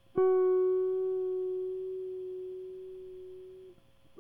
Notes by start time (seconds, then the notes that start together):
0.18 F#4